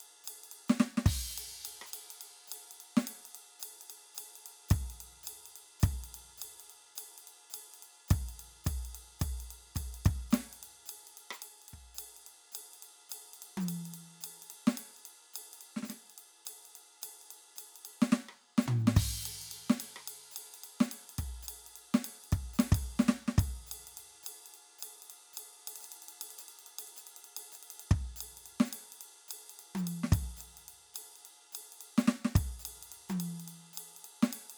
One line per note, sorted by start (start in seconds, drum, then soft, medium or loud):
0.01 ride medium
0.25 ride loud
0.25 percussion medium
0.44 ride medium
0.52 ride medium
0.69 snare loud
0.69 percussion soft
0.80 snare loud
0.98 snare medium
1.06 kick loud
1.06 crash loud
1.31 percussion medium
1.38 ride loud
1.66 ride loud
1.82 high tom medium
1.87 percussion medium
1.94 ride loud
2.11 ride medium
2.21 ride medium
2.48 percussion medium
2.52 ride loud
2.72 ride medium
2.81 ride medium
2.97 snare loud
2.97 percussion medium
3.08 ride loud
3.26 ride medium
3.35 ride medium
3.60 ride loud
3.60 percussion medium
3.82 ride medium
3.90 ride medium
4.15 ride loud
4.15 percussion medium
4.36 ride medium
4.47 ride medium
4.69 kick loud
4.69 ride loud
4.69 percussion medium
4.91 ride medium
5.01 ride medium
5.24 ride loud
5.24 percussion medium
5.46 ride medium
5.56 ride medium
5.80 kick loud
5.80 ride loud
5.80 percussion medium
6.04 ride medium
6.15 ride medium
6.38 percussion medium
6.42 ride loud
6.60 ride medium
6.70 ride medium
6.96 ride loud
6.96 percussion medium
7.18 ride medium
7.28 ride medium
7.51 percussion medium
7.55 ride loud
7.74 ride medium
7.83 ride medium
8.09 kick loud
8.09 ride loud
8.09 percussion medium
8.29 ride medium
8.40 ride medium
8.65 kick loud
8.65 ride loud
8.65 percussion medium
8.86 ride medium
8.95 ride medium
9.20 kick medium
9.20 ride loud
9.20 percussion medium
9.41 ride medium
9.51 ride medium
9.76 kick medium
9.76 ride loud
9.76 percussion medium
9.95 ride medium
10.06 kick loud
10.06 ride medium
10.31 snare loud
10.31 ride loud
10.31 percussion medium
10.54 ride medium
10.64 ride medium
10.86 ride loud
10.86 percussion medium
11.08 ride medium
11.31 high tom medium
11.31 percussion medium
11.43 ride loud
11.62 ride soft
11.69 ride medium
11.74 kick soft
11.95 ride loud
11.95 percussion medium
12.17 ride medium
12.27 ride medium
12.53 ride loud
12.53 percussion medium
12.74 ride medium
12.83 ride medium
13.10 ride loud
13.10 percussion medium
13.34 ride medium
13.43 ride medium
13.58 high tom loud
13.58 percussion medium
13.69 ride loud
13.86 ride medium
13.94 ride medium
14.21 ride loud
14.21 percussion medium
14.43 ride medium
14.51 ride medium
14.68 snare loud
14.68 percussion medium
14.78 ride loud
14.97 ride soft
15.06 ride medium
15.34 ride loud
15.34 percussion medium
15.54 ride medium
15.61 ride medium
15.77 snare medium
15.83 snare medium
15.83 percussion medium
15.90 snare soft
15.90 ride medium
16.10 ride soft
16.19 ride medium
16.46 ride loud
16.46 percussion medium
16.66 ride medium
17.02 ride loud
17.02 percussion medium
17.22 ride soft
17.31 ride medium
17.57 ride loud
17.57 percussion medium
17.76 ride medium
17.86 ride loud
18.02 snare loud
18.02 percussion soft
18.13 snare loud
18.29 high tom medium
18.59 snare loud
18.59 percussion medium
18.66 kick soft
18.66 floor tom loud
18.79 percussion soft
18.88 snare loud
18.97 kick loud
18.97 crash loud
19.21 percussion medium
19.26 ride loud
19.42 ride medium
19.52 ride medium
19.70 snare loud
19.70 percussion medium
19.81 ride loud
19.97 high tom medium
20.08 ride loud
20.32 percussion medium
20.37 ride loud
20.55 ride medium
20.64 ride medium
20.81 snare loud
20.81 percussion medium
20.92 ride loud
21.10 ride medium
21.19 kick medium
21.19 ride loud
21.43 percussion medium
21.49 ride loud
21.67 ride medium
21.76 ride medium
21.95 snare loud
21.95 percussion medium
22.05 ride loud
22.25 ride medium
22.33 kick loud
22.33 ride medium
22.54 percussion medium
22.59 snare loud
22.59 ride loud
22.73 kick loud
22.73 ride loud
23.00 snare loud
23.00 percussion medium
23.09 snare loud
23.28 snare medium
23.38 kick loud
23.38 ride loud
23.67 percussion medium
23.72 ride loud
23.88 ride medium
24.24 ride loud
24.24 percussion medium
24.46 ride medium
24.54 ride medium
24.79 ride loud
24.79 percussion medium
25.03 ride medium
25.11 ride medium
25.34 ride loud
25.34 percussion medium
25.68 ride loud
25.76 ride medium
25.81 ride medium
25.81 percussion medium
25.93 ride medium
26.03 ride medium
26.09 ride medium
26.22 ride loud
26.31 ride medium
26.39 ride medium
26.39 percussion medium
26.49 ride medium
26.60 ride medium
26.67 ride medium
26.79 ride loud
26.88 ride medium
26.97 ride medium
26.97 percussion medium
27.07 ride medium
27.17 ride medium
27.25 ride medium
27.37 ride loud
27.53 ride medium
27.53 percussion medium
27.63 ride medium
27.71 ride medium
27.80 ride medium
27.92 kick loud
28.17 percussion medium
28.21 ride loud
28.38 ride medium
28.46 ride medium
28.61 snare loud
28.66 percussion medium
28.73 ride loud
28.93 ride medium
29.02 ride medium
29.29 ride loud
29.29 percussion medium
29.50 ride medium
29.60 ride medium
29.76 high tom loud
29.76 percussion medium
29.88 ride loud
30.04 snare medium
30.13 kick loud
30.13 ride loud
30.38 ride medium
30.38 percussion medium
30.58 ride medium
30.69 ride medium
30.95 ride loud
30.95 percussion medium
31.16 ride soft
31.26 ride medium
31.53 ride loud
31.53 percussion medium
31.73 ride medium
31.81 ride medium
31.98 snare loud
31.98 percussion medium
32.08 snare loud
32.25 snare medium
32.36 kick loud
32.36 ride loud
32.60 percussion medium
32.66 ride loud
32.83 ride medium
32.92 ride medium
33.10 high tom loud
33.10 percussion medium
33.21 ride loud
33.40 ride medium
33.48 ride medium
33.74 percussion medium
33.78 ride loud
33.97 ride medium
34.05 ride medium
34.23 snare loud
34.23 percussion medium
34.33 ride loud
34.50 ride medium